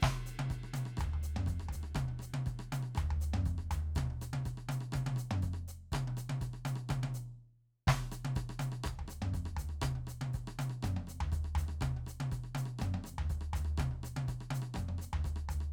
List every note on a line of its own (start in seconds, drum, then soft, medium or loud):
0.01 kick medium
0.01 snare loud
0.01 hi-hat pedal medium
0.01 high tom loud
0.26 hi-hat pedal medium
0.39 high tom loud
0.50 kick medium
0.50 cross-stick medium
0.50 hi-hat pedal medium
0.64 cross-stick soft
0.74 hi-hat pedal loud
0.74 high tom loud
0.86 cross-stick soft
0.97 kick medium
0.97 cross-stick medium
0.97 hi-hat pedal medium
1.01 cross-stick soft
1.01 floor tom loud
1.14 floor tom medium
1.23 hi-hat pedal loud
1.36 mid tom loud
1.47 kick medium
1.47 cross-stick soft
1.47 hi-hat pedal medium
1.60 cross-stick soft
1.69 floor tom loud
1.69 hi-hat pedal medium
1.83 cross-stick soft
1.95 kick medium
1.95 cross-stick medium
1.95 hi-hat pedal medium
1.95 high tom loud
2.09 high tom medium
2.11 high tom soft
2.19 cross-stick soft
2.19 hi-hat pedal medium
2.34 high tom loud
2.46 kick medium
2.46 cross-stick soft
2.46 hi-hat pedal medium
2.59 cross-stick medium
2.72 hi-hat pedal medium
2.72 high tom loud
2.83 cross-stick soft
2.95 kick medium
2.95 cross-stick medium
2.95 floor tom loud
2.95 hi-hat pedal medium
3.11 floor tom medium
3.21 cross-stick soft
3.21 hi-hat pedal loud
3.34 mid tom loud
3.46 kick medium
3.46 cross-stick soft
3.46 hi-hat pedal medium
3.58 cross-stick soft
3.71 floor tom loud
3.71 hi-hat pedal loud
3.95 kick medium
3.95 cross-stick medium
3.95 hi-hat pedal medium
3.95 high tom loud
4.06 high tom soft
4.10 high tom medium
4.14 high tom soft
4.22 cross-stick soft
4.22 hi-hat pedal loud
4.33 high tom loud
4.46 kick medium
4.46 cross-stick soft
4.46 hi-hat pedal medium
4.58 cross-stick soft
4.69 hi-hat pedal medium
4.69 high tom loud
4.81 cross-stick soft
4.93 kick medium
4.93 cross-stick medium
4.93 hi-hat pedal medium
4.93 high tom loud
5.07 high tom loud
5.16 cross-stick soft
5.16 hi-hat pedal medium
5.31 mid tom loud
5.42 kick medium
5.42 cross-stick soft
5.42 hi-hat pedal medium
5.54 cross-stick soft
5.68 hi-hat pedal loud
5.92 kick medium
5.92 cross-stick medium
5.92 hi-hat pedal medium
5.92 high tom loud
6.08 high tom medium
6.12 high tom soft
6.17 cross-stick soft
6.17 hi-hat pedal loud
6.30 high tom loud
6.41 kick medium
6.41 cross-stick medium
6.41 hi-hat pedal medium
6.53 cross-stick soft
6.65 hi-hat pedal medium
6.65 high tom loud
6.76 cross-stick medium
6.89 kick medium
6.89 cross-stick medium
6.89 hi-hat pedal medium
6.89 high tom loud
7.03 high tom loud
7.14 hi-hat pedal loud
7.87 kick medium
7.87 snare loud
7.87 hi-hat pedal medium
7.87 high tom loud
8.04 high tom soft
8.12 cross-stick medium
8.12 hi-hat pedal loud
8.25 high tom loud
8.36 kick medium
8.36 cross-stick medium
8.36 hi-hat pedal medium
8.49 cross-stick medium
8.60 hi-hat pedal medium
8.60 high tom loud
8.72 cross-stick medium
8.84 kick medium
8.84 cross-stick medium
8.84 hi-hat pedal medium
8.84 floor tom medium
8.99 floor tom medium
9.08 cross-stick medium
9.08 hi-hat pedal loud
9.22 mid tom loud
9.34 kick medium
9.34 cross-stick soft
9.34 hi-hat pedal medium
9.46 cross-stick soft
9.57 floor tom loud
9.57 hi-hat pedal loud
9.69 cross-stick soft
9.82 kick medium
9.82 cross-stick medium
9.82 hi-hat pedal medium
9.82 high tom loud
9.95 high tom medium
10.07 cross-stick soft
10.07 hi-hat pedal medium
10.21 high tom loud
10.34 kick medium
10.34 cross-stick soft
10.34 hi-hat pedal medium
10.48 cross-stick medium
10.59 hi-hat pedal medium
10.59 high tom loud
10.70 cross-stick soft
10.83 kick medium
10.83 cross-stick medium
10.83 hi-hat pedal medium
10.83 mid tom loud
10.97 mid tom medium
11.07 cross-stick soft
11.07 hi-hat pedal medium
11.21 floor tom loud
11.32 kick medium
11.32 cross-stick soft
11.32 hi-hat pedal medium
11.45 cross-stick soft
11.55 floor tom loud
11.55 hi-hat pedal medium
11.68 cross-stick soft
11.81 kick medium
11.81 cross-stick medium
11.81 hi-hat pedal medium
11.81 high tom loud
11.97 high tom medium
12.07 cross-stick soft
12.07 hi-hat pedal medium
12.20 high tom loud
12.32 kick medium
12.32 cross-stick soft
12.32 hi-hat pedal medium
12.44 cross-stick soft
12.55 hi-hat pedal medium
12.55 high tom loud
12.66 cross-stick soft
12.79 kick medium
12.79 cross-stick medium
12.79 hi-hat pedal medium
12.79 mid tom loud
12.94 mid tom loud
13.04 cross-stick soft
13.04 hi-hat pedal loud
13.18 floor tom loud
13.30 kick medium
13.30 cross-stick soft
13.30 hi-hat pedal medium
13.41 cross-stick soft
13.53 floor tom loud
13.53 hi-hat pedal loud
13.65 cross-stick soft
13.78 kick medium
13.78 cross-stick medium
13.78 hi-hat pedal medium
13.78 high tom loud
13.91 high tom soft
13.94 high tom soft
13.96 high tom soft
14.03 cross-stick medium
14.03 hi-hat pedal loud
14.17 high tom loud
14.28 kick medium
14.28 cross-stick medium
14.28 hi-hat pedal medium
14.41 cross-stick soft
14.51 hi-hat pedal medium
14.51 high tom loud
14.62 cross-stick medium
14.74 kick medium
14.74 cross-stick medium
14.74 hi-hat pedal medium
14.74 mid tom loud
14.89 mid tom medium
14.98 cross-stick soft
14.98 hi-hat pedal medium
15.13 floor tom loud
15.25 kick medium
15.25 cross-stick soft
15.25 hi-hat pedal medium
15.36 cross-stick soft
15.49 floor tom loud
15.49 hi-hat pedal medium
15.61 cross-stick soft